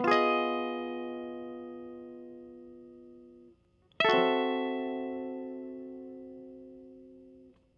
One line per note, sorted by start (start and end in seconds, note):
0.00 3.52 B3
0.00 3.56 F4
0.08 2.41 G#4
0.08 2.55 D#5
4.00 5.28 E5
4.05 6.50 A4
4.09 7.55 F#4
4.14 7.55 C4